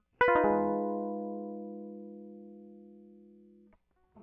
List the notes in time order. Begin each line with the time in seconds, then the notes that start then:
0.22 B4
0.29 F4
0.36 D#4
0.45 G#3